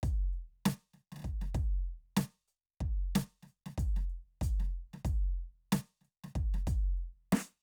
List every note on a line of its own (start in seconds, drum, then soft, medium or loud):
0.02 closed hi-hat soft
0.02 kick medium
0.07 crash soft
0.33 closed hi-hat soft
0.65 snare loud
0.65 closed hi-hat soft
0.93 snare soft
0.93 closed hi-hat soft
1.12 snare soft
1.16 snare soft
1.19 snare soft
1.22 kick medium
1.22 snare soft
1.22 closed hi-hat soft
1.41 snare soft
1.55 kick medium
1.55 closed hi-hat soft
1.84 closed hi-hat soft
2.16 closed hi-hat medium
2.16 snare loud
2.48 closed hi-hat soft
2.80 kick medium
2.80 closed hi-hat soft
3.15 closed hi-hat medium
3.15 snare loud
3.43 snare soft
3.47 closed hi-hat soft
3.66 snare soft
3.78 kick medium
3.78 closed hi-hat medium
3.96 snare soft
4.10 closed hi-hat soft
4.41 closed hi-hat medium
4.41 kick medium
4.60 snare soft
4.64 snare soft
4.75 closed hi-hat soft
4.93 snare soft
5.05 kick medium
5.05 closed hi-hat medium
5.72 closed hi-hat medium
5.72 snare loud
6.01 snare soft
6.01 closed hi-hat soft
6.24 snare soft
6.35 kick medium
6.35 closed hi-hat soft
6.54 snare soft
6.67 closed hi-hat medium
6.67 kick medium
6.97 closed hi-hat soft
7.32 closed hi-hat medium
7.32 snare loud